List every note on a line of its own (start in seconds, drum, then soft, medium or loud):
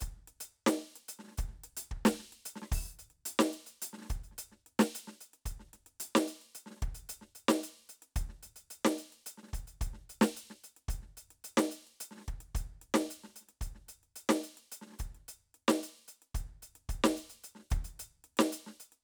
0.01 closed hi-hat medium
0.01 kick medium
0.17 snare soft
0.28 closed hi-hat soft
0.41 closed hi-hat medium
0.67 closed hi-hat medium
0.67 snare loud
0.81 snare soft
0.96 closed hi-hat medium
1.09 closed hi-hat medium
1.19 snare soft
1.24 snare soft
1.28 snare soft
1.31 snare soft
1.38 closed hi-hat medium
1.38 kick medium
1.48 snare soft
1.51 snare soft
1.54 snare soft
1.64 closed hi-hat medium
1.77 closed hi-hat loud
1.91 kick medium
2.06 closed hi-hat medium
2.06 snare loud
2.14 snare soft
2.20 snare soft
2.23 snare soft
2.33 closed hi-hat soft
2.46 closed hi-hat medium
2.56 snare soft
2.62 cross-stick soft
2.62 snare soft
2.72 open hi-hat loud
2.72 kick medium
2.99 closed hi-hat soft
3.11 closed hi-hat soft
3.26 closed hi-hat loud
3.39 snare loud
3.54 closed hi-hat medium
3.67 closed hi-hat soft
3.82 closed hi-hat loud
3.93 snare soft
3.98 snare soft
4.02 snare soft
4.05 snare soft
4.10 closed hi-hat medium
4.10 kick medium
4.10 snare soft
4.16 snare soft
4.24 closed hi-hat soft
4.32 snare soft
4.38 closed hi-hat medium
4.52 snare soft
4.67 closed hi-hat soft
4.79 closed hi-hat medium
4.79 snare loud
4.95 closed hi-hat medium
5.08 snare soft
5.12 snare soft
5.21 closed hi-hat soft
5.34 closed hi-hat soft
5.46 closed hi-hat medium
5.46 kick medium
5.60 snare soft
5.69 kick soft
5.74 snare soft
5.74 closed hi-hat soft
5.87 closed hi-hat soft
6.00 closed hi-hat loud
6.16 snare loud
6.28 closed hi-hat soft
6.42 closed hi-hat soft
6.55 closed hi-hat medium
6.66 snare soft
6.71 snare soft
6.77 snare soft
6.80 kick medium
6.80 snare soft
6.80 closed hi-hat soft
6.87 snare soft
6.95 closed hi-hat soft
7.09 closed hi-hat medium
7.22 snare soft
7.35 closed hi-hat medium
7.49 closed hi-hat soft
7.49 snare loud
7.64 closed hi-hat medium
7.89 closed hi-hat medium
8.02 closed hi-hat soft
8.16 closed hi-hat medium
8.16 kick medium
8.29 snare soft
8.43 closed hi-hat medium
8.43 snare soft
8.56 closed hi-hat soft
8.71 closed hi-hat medium
8.85 snare loud
8.98 closed hi-hat medium
9.13 closed hi-hat soft
9.26 closed hi-hat medium
9.38 snare soft
9.43 snare soft
9.48 snare soft
9.53 closed hi-hat medium
9.53 kick medium
9.53 snare soft
9.58 snare soft
9.68 closed hi-hat soft
9.81 closed hi-hat medium
9.81 kick medium
9.94 snare soft
10.10 closed hi-hat soft
10.22 closed hi-hat medium
10.22 snare loud
10.35 closed hi-hat medium
10.35 snare soft
10.50 snare soft
10.64 closed hi-hat medium
10.77 closed hi-hat soft
10.89 closed hi-hat medium
10.89 kick medium
11.02 snare soft
11.17 closed hi-hat medium
11.31 closed hi-hat soft
11.45 closed hi-hat medium
11.58 snare loud
11.71 closed hi-hat medium
11.87 closed hi-hat soft
12.01 closed hi-hat medium
12.11 snare soft
12.15 snare soft
12.17 snare soft
12.21 snare soft
12.28 kick medium
12.28 closed hi-hat soft
12.41 closed hi-hat soft
12.55 closed hi-hat medium
12.55 kick medium
12.82 closed hi-hat soft
12.94 snare loud
12.94 closed hi-hat soft
13.11 closed hi-hat medium
13.24 snare soft
13.29 snare soft
13.34 closed hi-hat medium
13.34 snare soft
13.37 snare soft
13.41 snare soft
13.47 snare soft
13.47 closed hi-hat soft
13.61 closed hi-hat medium
13.61 kick medium
13.75 snare soft
13.87 snare soft
13.88 closed hi-hat medium
13.88 snare soft
14.03 closed hi-hat soft
14.16 closed hi-hat medium
14.29 snare loud
14.44 closed hi-hat medium
14.57 closed hi-hat soft
14.72 closed hi-hat medium
14.82 snare soft
14.87 snare soft
14.90 snare soft
14.93 snare soft
14.99 closed hi-hat medium
14.99 kick medium
14.99 snare soft
15.02 snare soft
15.06 snare soft
15.10 snare soft
15.13 snare soft
15.13 closed hi-hat soft
15.15 snare soft
15.19 snare soft
15.29 closed hi-hat medium
15.55 closed hi-hat soft
15.68 snare loud
15.68 closed hi-hat soft
15.83 closed hi-hat medium
16.08 closed hi-hat medium
16.22 closed hi-hat soft
16.35 closed hi-hat medium
16.35 kick medium
16.47 snare soft
16.62 closed hi-hat medium
16.62 snare soft
16.76 closed hi-hat soft
16.89 closed hi-hat medium
16.89 kick medium
17.04 snare loud
17.17 closed hi-hat soft
17.30 closed hi-hat soft
17.44 closed hi-hat medium
17.55 snare soft
17.59 snare soft
17.71 closed hi-hat soft
17.71 kick medium
17.85 closed hi-hat soft
17.85 snare soft
18.00 closed hi-hat medium
18.24 closed hi-hat soft
18.37 snare loud
18.37 closed hi-hat soft
18.53 closed hi-hat medium
18.67 snare soft
18.69 snare soft
18.80 closed hi-hat soft
18.92 closed hi-hat soft